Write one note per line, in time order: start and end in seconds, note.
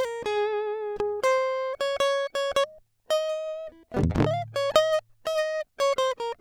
0.00 0.12 B4
0.12 0.27 A#4
0.27 0.99 G#4
1.01 1.23 G#4
1.25 1.78 C5
1.82 1.99 C#5
2.02 2.32 C#5
2.36 2.54 C#5
2.58 2.65 C#5
2.65 2.84 D#5
3.12 3.72 D#5
3.99 4.09 A2
3.99 4.09 D3
4.20 4.89 A2
4.20 4.36 D3
4.32 4.47 F5
4.57 4.74 C#5
4.77 5.04 D#5
5.28 5.66 D#5
5.81 5.97 C#5
5.99 6.16 C5
6.22 6.37 A#4